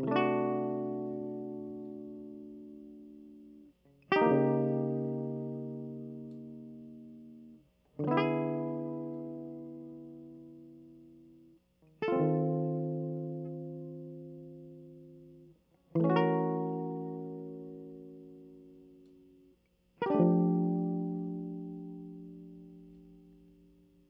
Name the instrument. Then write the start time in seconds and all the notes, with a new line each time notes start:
electric guitar
0.00 C3
0.05 E3 A3
0.11 D4
0.16 F#4
4.12 G4
4.16 D#4
4.22 A#3
4.27 E3
4.32 C#3
8.00 D3
8.05 F3 B3
8.11 E4
8.17 G#4
12.02 A4
12.08 F4
12.12 C4
12.21 D#3
15.96 E3
16.04 A3 C#4
16.10 F#4
16.16 A#4
20.02 A#4
20.06 D4 G4
20.20 F3